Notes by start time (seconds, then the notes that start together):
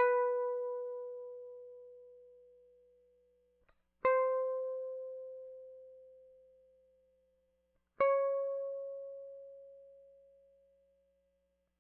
0.00 B4
4.05 C5
8.01 C#5